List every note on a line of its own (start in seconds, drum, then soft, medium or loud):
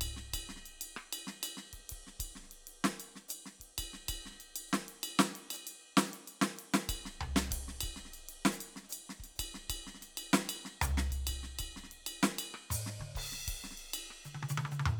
0.01 kick soft
0.01 ride bell loud
0.07 kick soft
0.17 snare soft
0.33 kick soft
0.33 ride bell loud
0.49 snare soft
0.56 snare soft
0.66 ride bell soft
0.81 ride bell medium
0.96 cross-stick medium
1.13 ride bell loud
1.27 snare medium
1.43 hi-hat pedal medium
1.43 ride bell loud
1.57 snare soft
1.73 kick soft
1.73 ride medium
1.79 snare soft
1.89 kick soft
1.89 ride medium
2.07 snare soft
2.20 kick soft
2.20 ride bell medium
2.35 snare soft
2.40 snare soft
2.43 snare soft
2.49 snare soft
2.49 ride medium
2.67 ride medium
2.84 snare loud
3.00 ride bell medium
3.16 snare soft
3.29 hi-hat pedal medium
3.29 ride bell medium
3.46 snare soft
3.57 kick soft
3.57 snare soft
3.61 ride medium
3.78 kick soft
3.78 ride bell loud
3.83 kick soft
3.93 snare soft
4.08 kick soft
4.08 ride bell loud
4.14 kick soft
4.26 snare soft
4.31 snare soft
4.34 snare soft
4.40 ride bell soft
4.56 ride bell medium
4.68 hi-hat pedal soft
4.73 snare medium
4.88 ride medium
5.03 ride bell loud
5.19 snare loud
5.35 ride medium
5.50 hi-hat pedal medium
5.50 ride bell loud
5.67 ride bell medium
5.97 snare loud
6.05 hi-hat pedal soft
6.13 ride medium
6.28 ride bell medium
6.42 snare loud
6.56 hi-hat pedal soft
6.56 ride medium
6.74 snare loud
6.89 kick soft
6.89 ride bell loud
6.95 kick soft
7.05 snare soft
7.21 floor tom medium
7.36 snare loud
7.51 kick soft
7.51 hi-hat pedal medium
7.51 ride loud
7.58 kick soft
7.68 snare soft
7.81 kick soft
7.81 ride bell loud
7.96 snare soft
8.05 snare soft
8.14 ride bell soft
8.29 ride medium
8.45 snare loud
8.52 hi-hat pedal medium
8.61 ride bell medium
8.76 snare soft
8.83 snare soft
8.89 hi-hat pedal medium
8.89 ride bell medium
9.09 snare soft
9.20 kick soft
9.20 snare soft
9.24 ride bell soft
9.36 kick soft
9.36 hi-hat pedal soft
9.36 ride bell loud
9.54 snare soft
9.70 kick soft
9.70 ride bell loud
9.87 snare soft
9.95 snare soft
10.01 snare soft
10.01 ride bell medium
10.17 ride bell loud
10.33 snare loud
10.49 ride bell loud
10.65 snare soft
10.81 hi-hat pedal loud
10.81 floor tom loud
10.97 snare medium
11.10 kick soft
11.10 ride bell medium
11.27 kick soft
11.27 ride bell loud
11.36 kick soft
11.43 snare soft
11.59 kick soft
11.59 ride bell loud
11.76 snare soft
11.84 snare soft
11.91 snare soft
11.91 ride medium
12.06 ride bell loud
12.23 snare loud
12.39 ride bell loud
12.54 cross-stick medium
12.70 hi-hat pedal loud
12.70 mid tom loud
12.86 snare medium
12.99 kick soft
12.99 snare soft
12.99 high tom medium
13.15 kick soft
13.15 crash loud
13.32 snare soft
13.48 kick soft
13.48 ride loud
13.54 kick soft
13.64 snare soft
13.71 snare soft
13.78 ride medium
13.94 ride bell loud
14.11 cross-stick soft
14.25 hi-hat pedal soft
14.25 high tom medium
14.35 high tom medium
14.43 high tom loud
14.49 hi-hat pedal medium
14.49 high tom medium
14.58 high tom loud
14.65 high tom medium
14.71 hi-hat pedal soft
14.71 high tom medium
14.80 high tom medium
14.86 mid tom loud